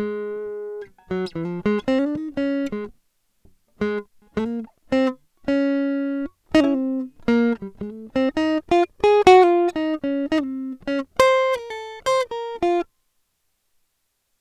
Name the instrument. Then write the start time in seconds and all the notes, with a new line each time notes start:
acoustic guitar
0.01 G#3
1.12 F#3
1.38 E3
1.47 F3
1.67 G#3
1.89 C4
2.00 D4
2.17 D#4
2.30 C#4
2.39 C#4
2.74 G#3
3.83 G#3
4.38 A3
4.94 C4
5.50 C#4
6.56 D#4
6.66 C#4
6.76 C4
7.29 A#3
7.64 G3
7.83 G#3
8.17 C4
8.38 D#4
8.73 F4
9.05 G#4
9.28 F#4
9.44 F4
9.77 D#4
10.05 C#4
10.33 D#4
10.46 C4
10.89 C#4
11.21 C5
11.57 A#4
11.72 A4
12.08 C5
12.33 A#4